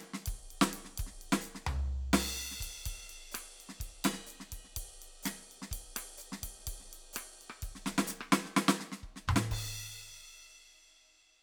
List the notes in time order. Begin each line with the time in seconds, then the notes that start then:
0.01 ride
0.14 snare
0.26 kick, ride
0.35 kick
0.39 kick
0.51 ride
0.62 snare
0.73 hi-hat pedal, ride
0.85 snare
0.98 kick, ride
1.07 kick, snare
1.22 ride
1.33 snare
1.41 hi-hat pedal
1.46 ride bell
1.55 snare
1.67 floor tom
2.13 snare, crash
2.52 snare
2.61 kick, hi-hat pedal, ride
2.66 kick
2.86 kick, ride
2.97 snare
3.03 snare
3.10 ride
3.32 cross-stick, hi-hat pedal, ride
3.61 ride
3.69 snare
3.80 kick, hi-hat pedal, ride
3.88 kick
4.05 snare, ride bell
4.13 snare
4.27 hi-hat pedal, ride
4.40 snare
4.52 kick, ride
4.65 snare
4.72 snare
4.77 kick, ride
5.02 ride
5.23 snare, hi-hat pedal, ride
5.51 ride
5.62 snare
5.72 kick, hi-hat pedal, ride
5.79 kick
5.97 cross-stick, ride
6.18 hi-hat pedal
6.22 ride
6.32 snare
6.43 kick, ride
6.59 snare
6.67 kick, hi-hat pedal, ride
6.73 kick
6.80 snare
6.85 snare
6.93 ride
7.13 cross-stick, hi-hat pedal, ride
7.41 ride
7.50 cross-stick
7.63 kick, hi-hat pedal, ride
7.69 kick
7.71 kick
7.76 snare
7.86 snare
7.98 snare
8.07 snare, hi-hat pedal
8.21 cross-stick
8.33 snare
8.46 snare
8.57 snare
8.69 snare
8.80 snare
8.92 snare
9.03 kick
9.16 snare
9.28 kick, mid tom
9.36 snare
9.51 kick, crash
9.58 kick